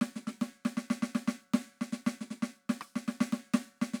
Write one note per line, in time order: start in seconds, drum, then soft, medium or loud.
0.05 snare loud
0.16 snare medium
0.27 snare medium
0.42 snare medium
0.65 snare loud
0.78 snare medium
0.91 snare loud
1.03 snare medium
1.15 snare loud
1.28 snare loud
1.54 snare loud
1.81 snare medium
1.93 snare medium
2.07 snare loud
2.21 snare medium
2.31 snare medium
2.43 snare medium
2.70 snare loud
2.81 cross-stick medium
2.96 snare medium
3.08 snare medium
3.21 snare loud
3.33 snare medium
3.54 snare loud
3.82 snare loud
3.94 snare medium